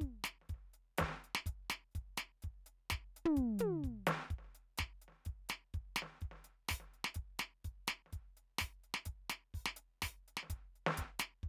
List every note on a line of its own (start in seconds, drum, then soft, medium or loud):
0.01 kick soft
0.01 closed hi-hat soft
0.24 closed hi-hat loud
0.24 snare medium
0.41 snare soft
0.49 kick soft
0.49 closed hi-hat soft
0.54 snare soft
0.73 closed hi-hat soft
0.98 closed hi-hat medium
0.98 kick soft
0.98 snare medium
1.08 snare soft
1.24 closed hi-hat soft
1.35 snare medium
1.46 closed hi-hat medium
1.46 kick soft
1.70 closed hi-hat medium
1.70 snare medium
1.91 closed hi-hat soft
1.91 kick soft
1.91 hi-hat pedal soft
2.17 closed hi-hat loud
2.17 snare medium
2.42 closed hi-hat soft
2.42 kick soft
2.66 closed hi-hat medium
2.90 closed hi-hat medium
2.90 kick soft
2.90 snare medium
3.16 closed hi-hat medium
3.25 floor tom loud
3.36 kick soft
3.36 closed hi-hat medium
3.59 closed hi-hat medium
3.59 mid tom medium
3.84 kick soft
3.84 closed hi-hat soft
4.07 closed hi-hat medium
4.07 snare medium
4.30 kick soft
4.30 closed hi-hat soft
4.38 snare soft
4.44 snare soft
4.54 closed hi-hat soft
4.77 closed hi-hat medium
4.77 kick soft
4.77 snare medium
5.01 closed hi-hat soft
5.08 snare soft
5.12 snare soft
5.25 closed hi-hat soft
5.25 kick soft
5.49 closed hi-hat medium
5.49 snare medium
5.74 kick soft
5.74 closed hi-hat soft
5.96 closed hi-hat medium
5.96 snare loud
6.02 snare soft
6.21 closed hi-hat soft
6.21 kick soft
6.31 snare soft
6.36 snare soft
6.44 closed hi-hat soft
6.68 open hi-hat medium
6.68 kick soft
6.68 snare medium
6.80 snare soft
6.93 closed hi-hat soft
7.04 snare medium
7.14 closed hi-hat medium
7.14 kick soft
7.39 closed hi-hat medium
7.39 snare medium
7.64 open hi-hat soft
7.64 kick soft
7.87 closed hi-hat medium
7.87 snare medium
8.06 snare soft
8.12 closed hi-hat soft
8.12 kick soft
8.37 closed hi-hat soft
8.58 open hi-hat medium
8.58 kick soft
8.58 snare medium
8.83 closed hi-hat soft
8.94 snare medium
9.05 closed hi-hat medium
9.05 kick soft
9.29 closed hi-hat loud
9.29 snare medium
9.54 open hi-hat soft
9.54 kick soft
9.65 snare medium
9.76 closed hi-hat medium
10.02 open hi-hat medium
10.02 kick soft
10.02 snare medium
10.28 closed hi-hat soft
10.37 snare medium
10.43 snare soft
10.50 closed hi-hat medium
10.50 kick soft
10.75 open hi-hat soft
10.86 snare medium
10.97 closed hi-hat loud
10.97 kick soft
11.19 closed hi-hat loud
11.19 snare medium
11.43 kick soft